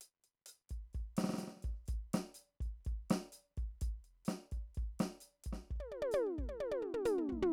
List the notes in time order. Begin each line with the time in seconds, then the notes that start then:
0.03 closed hi-hat
0.23 closed hi-hat
0.45 open hi-hat, hi-hat pedal
0.69 closed hi-hat, kick
0.92 kick, hi-hat pedal
0.99 kick
1.16 closed hi-hat, snare
1.23 snare
1.28 snare
1.33 snare
1.37 closed hi-hat, snare, hi-hat pedal
1.42 snare
1.47 snare
1.52 snare
1.56 snare
1.61 closed hi-hat, kick, snare
1.63 snare
1.67 kick, snare
1.73 snare
1.85 closed hi-hat, kick, hi-hat pedal
1.93 kick
2.13 closed hi-hat, snare
2.33 hi-hat pedal
2.38 closed hi-hat
2.60 closed hi-hat, kick
2.65 kick
2.84 closed hi-hat, kick
2.91 kick
3.09 closed hi-hat, snare
3.31 closed hi-hat, hi-hat pedal
3.56 closed hi-hat, kick
3.62 kick
3.80 closed hi-hat, kick
3.86 kick
4.03 closed hi-hat
4.24 snare, hi-hat pedal
4.28 closed hi-hat
4.51 closed hi-hat, kick
4.56 kick
4.74 open hi-hat, kick
4.82 kick
4.99 closed hi-hat, snare
5.20 hi-hat pedal
5.43 closed hi-hat, kick
5.52 snare
5.70 kick
5.75 kick
5.79 high tom
5.91 high tom
6.01 high tom
6.11 hi-hat pedal, high tom
6.25 high tom
6.37 kick, high tom
6.43 kick
6.48 high tom
6.59 high tom
6.70 high tom
6.81 mid tom
6.93 mid tom
7.04 hi-hat pedal, mid tom
7.17 mid tom
7.28 kick, floor tom
7.41 floor tom